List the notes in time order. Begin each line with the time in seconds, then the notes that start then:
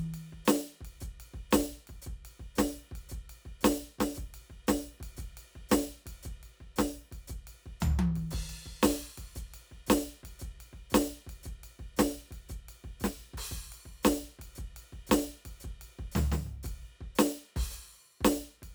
0.14 ride
0.32 kick
0.45 snare, hi-hat pedal
0.49 ride
0.81 kick
0.85 ride
1.01 kick, hi-hat pedal
1.20 ride
1.34 kick
1.51 kick, snare, hi-hat pedal, ride
1.87 kick, ride
2.02 hi-hat pedal
2.07 kick
2.25 ride
2.40 kick
2.56 kick, snare, hi-hat pedal
2.60 ride
2.91 kick
2.95 ride
3.09 kick, hi-hat pedal
3.30 ride
3.45 kick
3.61 kick, snare, hi-hat pedal
3.65 ride
3.99 kick, snare, ride
4.15 kick, hi-hat pedal
4.34 ride
4.50 kick
4.67 kick, snare, hi-hat pedal, ride
5.00 kick, ride
5.17 kick, hi-hat pedal, ride
5.37 ride
5.55 kick
5.69 kick, snare, hi-hat pedal, ride
6.06 kick, ride
6.23 kick, hi-hat pedal
6.43 ride
6.60 kick
6.76 kick, snare, hi-hat pedal, ride
7.12 kick, ride
7.28 kick, hi-hat pedal
7.47 ride
7.66 kick
7.80 kick, floor tom, hi-hat pedal
7.99 hi-hat pedal, high tom
8.16 kick, ride
8.31 kick, hi-hat pedal, crash
8.50 ride
8.66 kick
8.82 kick, snare, hi-hat pedal, crash
9.18 kick, ride
9.35 kick, hi-hat pedal
9.54 ride
9.71 kick
9.87 kick, snare, hi-hat pedal, ride
10.23 kick, ride
10.39 kick, hi-hat pedal
10.60 ride
10.73 kick
10.90 kick, hi-hat pedal
10.94 snare, ride
11.27 kick, ride
11.43 kick, hi-hat pedal
11.64 ride
11.79 kick
11.97 kick, snare, hi-hat pedal, ride
12.31 kick, ride
12.49 kick, hi-hat pedal
12.69 ride
12.84 kick
13.00 kick, hi-hat pedal
13.04 snare, ride
13.34 kick, crash
13.51 kick, hi-hat pedal
13.72 ride
13.86 kick
14.03 kick, snare, hi-hat pedal, ride
14.39 kick, ride
14.55 kick, hi-hat pedal
14.76 ride
14.93 kick
15.07 kick, hi-hat pedal
15.11 snare, ride
15.45 kick, ride
15.60 hi-hat pedal
15.64 kick
15.81 ride
15.99 kick
16.12 floor tom, hi-hat pedal
16.16 snare
16.32 snare, floor tom
16.46 kick
16.63 kick, hi-hat pedal, ride
16.85 hi-hat pedal
17.01 kick
17.15 snare, hi-hat pedal
17.19 ride
17.56 kick, crash
17.71 hi-hat pedal, ride
17.94 hi-hat pedal
18.21 kick, hi-hat pedal
18.25 snare, ride
18.62 kick, ride